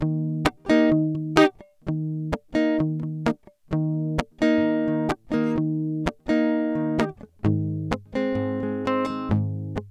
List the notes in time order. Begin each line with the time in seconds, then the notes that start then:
0.01 D#3 A#3
0.67 G4
0.71 A#3 D#4
0.93 D#3
1.16 D#3
1.38 D#4 G4
1.88 D#3
2.55 A#3 D#4
2.82 D#3
3.05 D#3
3.27 A#3
3.74 D#3
4.43 A#3 D#4
4.63 D#3
4.90 D#3
5.33 D#3 A#3 D#4
5.57 D#3
6.30 A#3 D#4
6.77 D#3
7.46 G#2 D#3
8.17 G#3 C4
8.37 G#2
8.62 G#3
8.87 C4 D#4
9.06 G#3 C4
9.33 G#2 D#3